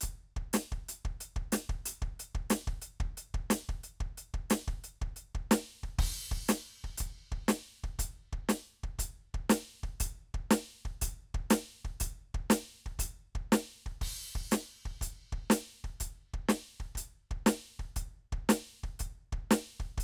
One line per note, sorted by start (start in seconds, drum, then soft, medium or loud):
0.01 closed hi-hat loud
0.01 kick medium
0.37 kick medium
0.53 closed hi-hat loud
0.53 snare loud
0.72 kick medium
0.89 closed hi-hat loud
1.05 kick medium
1.21 closed hi-hat medium
1.36 kick medium
1.52 closed hi-hat loud
1.52 snare loud
1.69 kick medium
1.86 closed hi-hat loud
2.02 kick medium
2.20 closed hi-hat medium
2.35 kick medium
2.50 closed hi-hat loud
2.50 snare loud
2.67 kick medium
2.82 closed hi-hat medium
3.00 kick medium
3.17 closed hi-hat medium
3.34 kick medium
3.50 closed hi-hat loud
3.50 snare loud
3.69 kick medium
3.84 closed hi-hat medium
4.01 kick medium
4.18 closed hi-hat medium
4.34 kick medium
4.50 closed hi-hat loud
4.50 snare loud
4.68 kick medium
4.84 closed hi-hat medium
5.02 kick medium
5.16 closed hi-hat medium
5.35 kick medium
5.51 closed hi-hat loud
5.51 snare loud
5.83 kick medium
5.99 kick loud
5.99 crash loud
6.32 kick medium
6.49 closed hi-hat loud
6.49 snare loud
6.84 kick soft
6.98 closed hi-hat loud
6.98 kick medium
7.32 kick medium
7.48 closed hi-hat loud
7.48 snare loud
7.84 kick medium
7.99 closed hi-hat loud
7.99 kick medium
8.33 kick medium
8.49 closed hi-hat loud
8.49 snare loud
8.84 kick medium
8.99 closed hi-hat loud
8.99 kick medium
9.34 kick medium
9.50 closed hi-hat loud
9.50 snare loud
9.83 kick medium
10.00 closed hi-hat loud
10.00 kick medium
10.34 kick medium
10.51 closed hi-hat loud
10.51 snare loud
10.85 kick medium
11.02 closed hi-hat loud
11.02 kick medium
11.35 kick medium
11.50 closed hi-hat loud
11.50 snare loud
11.85 kick medium
12.00 closed hi-hat loud
12.00 kick medium
12.35 kick medium
12.50 closed hi-hat loud
12.50 snare loud
12.86 kick soft
12.99 closed hi-hat loud
12.99 kick medium
13.35 kick medium
13.52 closed hi-hat loud
13.52 snare loud
13.86 kick medium
14.01 kick medium
14.01 crash medium
14.35 kick medium
14.52 closed hi-hat loud
14.52 snare loud
14.86 kick medium
15.01 closed hi-hat loud
15.01 kick medium
15.33 kick medium
15.50 closed hi-hat loud
15.50 snare loud
15.84 kick medium
16.00 closed hi-hat loud
16.00 kick medium
16.34 kick medium
16.49 closed hi-hat medium
16.49 snare loud
16.80 kick soft
16.95 closed hi-hat loud
16.95 kick soft
17.31 kick medium
17.46 closed hi-hat loud
17.46 snare loud
17.79 kick medium
17.96 closed hi-hat medium
17.96 kick medium
18.33 kick medium
18.49 closed hi-hat loud
18.49 snare loud
18.84 kick medium
19.00 closed hi-hat medium
19.00 kick medium
19.33 kick medium
19.51 closed hi-hat loud
19.51 snare loud
19.80 kick medium
19.98 closed hi-hat medium
19.98 kick medium